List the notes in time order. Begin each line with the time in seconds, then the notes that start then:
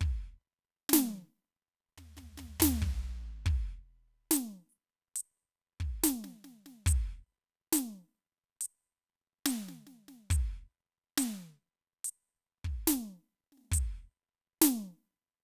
0.01 kick
0.89 snare
0.93 snare
1.98 snare, floor tom
2.17 snare, floor tom
2.38 snare, floor tom
2.60 snare, floor tom
2.82 kick
3.46 kick
4.31 closed hi-hat, snare
4.69 hi-hat pedal
5.16 closed hi-hat
5.80 kick
6.04 closed hi-hat, snare
6.24 snare
6.44 snare
6.66 snare
6.86 closed hi-hat, kick
7.06 kick
7.73 closed hi-hat, snare
8.61 closed hi-hat
9.46 closed hi-hat, snare
9.54 closed hi-hat
9.69 snare
9.87 snare
10.08 snare
10.30 closed hi-hat, kick
11.18 closed hi-hat, snare
12.05 closed hi-hat
12.65 kick
12.87 closed hi-hat, snare
13.52 snare
13.58 snare
13.61 snare
13.65 snare
13.72 closed hi-hat, kick
14.62 closed hi-hat, snare